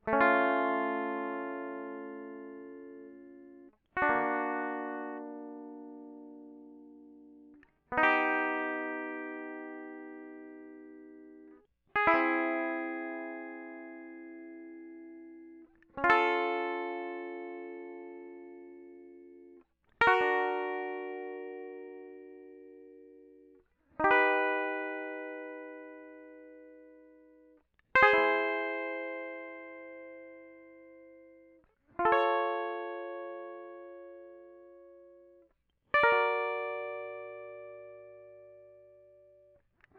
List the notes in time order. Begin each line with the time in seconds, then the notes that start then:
0.09 A3
0.14 C#4
0.21 F4
3.98 F#4
4.03 D4
4.11 A#3
4.17 D3
7.93 B3
7.98 D#4
8.04 G4
11.97 G#4
12.08 E4
12.15 C4
15.98 C#4
16.05 F4
16.11 A4
20.02 A#4
20.08 F#4
20.22 D4
24.01 D#4
24.05 G4
24.12 B4
27.96 C5
28.04 G#4
28.14 E4
32.00 F4
32.06 A4
32.13 C#5
35.95 D5
36.04 A#4
36.13 F#4